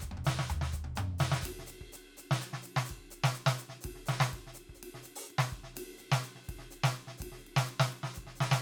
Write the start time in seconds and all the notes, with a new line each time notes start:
0.01 kick, hi-hat pedal
0.10 kick, mid tom
0.13 kick
0.18 high tom
0.25 snare, hi-hat pedal
0.39 snare
0.49 floor tom, hi-hat pedal
0.62 snare
0.73 kick, hi-hat pedal
0.80 kick
0.83 kick, high tom
0.96 hi-hat pedal, mid tom
1.19 snare, hi-hat pedal
1.32 snare
1.42 kick, hi-hat pedal, ride
1.50 kick
1.59 snare
1.67 hi-hat pedal, ride
1.81 kick
1.93 hi-hat pedal, ride
2.17 hi-hat pedal, ride
2.31 snare
2.41 hi-hat pedal, ride
2.53 snare
2.63 hi-hat pedal, ride
2.77 snare
2.85 hi-hat pedal
2.90 kick, ride bell
2.97 kick
3.00 kick
3.11 hi-hat pedal, ride
3.24 snare
3.34 hi-hat pedal, ride
3.47 snare
3.58 hi-hat pedal, ride
3.70 snare
3.81 kick, hi-hat pedal, ride
3.91 kick
3.95 kick, snare
4.06 snare, hi-hat pedal
4.21 snare
4.29 hi-hat pedal
4.33 kick, ride
4.39 kick
4.42 kick
4.47 snare
4.54 hi-hat pedal, ride
4.67 kick, snare
4.72 snare
4.75 snare, hi-hat pedal
4.83 ride
4.95 snare
5.03 hi-hat pedal, ride
5.16 open hi-hat
5.25 hi-hat pedal
5.31 ride
5.39 snare
5.49 kick, hi-hat pedal
5.54 ride bell
5.58 kick
5.64 snare
5.74 snare, hi-hat pedal, ride
5.98 hi-hat pedal, ride
6.12 snare
6.24 hi-hat pedal, ride
6.36 snare
6.44 hi-hat pedal
6.49 kick, ride
6.56 kick, snare
6.71 hi-hat pedal, ride
6.84 snare
6.92 hi-hat pedal
6.97 ride bell
7.08 snare
7.18 kick, hi-hat pedal
7.22 ride
7.27 kick
7.30 kick, snare
7.39 hi-hat pedal
7.47 ride
7.57 snare
7.66 hi-hat pedal, ride
7.80 snare
7.87 hi-hat pedal
7.93 ride
8.04 snare
8.14 kick, hi-hat pedal, ride bell
8.23 kick
8.26 kick, snare
8.36 hi-hat pedal
8.41 snare
8.52 snare